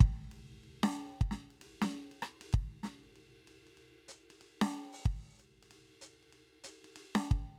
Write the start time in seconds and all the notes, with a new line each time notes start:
0.01 kick, crash
0.32 ride
0.53 ride
0.64 ride
0.84 snare
0.98 ride
1.21 kick
1.32 snare
1.51 ride
1.62 ride
1.82 snare
1.90 hi-hat pedal
1.94 ride
2.12 ride
2.23 cross-stick
2.42 ride
2.53 kick, ride
2.84 snare, hi-hat pedal, ride
3.04 ride
3.16 ride
3.48 ride
3.67 ride
3.78 ride
4.09 hi-hat pedal, ride
4.31 ride
4.42 ride
4.62 snare
4.66 hi-hat pedal
4.75 ride
4.93 open hi-hat
5.06 kick, ride
5.39 hi-hat pedal, ride
5.63 ride
5.71 ride
6.02 hi-hat pedal, ride
6.23 ride
6.33 ride
6.64 hi-hat pedal, ride
6.85 ride
6.96 ride
7.15 snare, hi-hat pedal
7.27 ride bell
7.32 kick